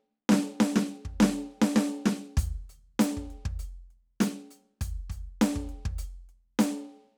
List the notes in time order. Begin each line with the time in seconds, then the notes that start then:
0.29 snare
0.32 snare
0.60 snare
0.76 snare
1.05 kick
1.20 snare
1.23 snare
1.62 snare
1.76 snare
2.06 snare
2.37 closed hi-hat, kick
2.69 closed hi-hat
3.00 closed hi-hat, snare
3.17 kick
3.30 closed hi-hat
3.45 kick
3.59 closed hi-hat
3.91 closed hi-hat
4.21 closed hi-hat, snare
4.51 closed hi-hat
4.81 closed hi-hat, kick
5.10 closed hi-hat, kick
5.41 closed hi-hat, snare
5.56 kick
5.69 closed hi-hat
5.85 kick
5.99 closed hi-hat
6.29 closed hi-hat
6.59 closed hi-hat, snare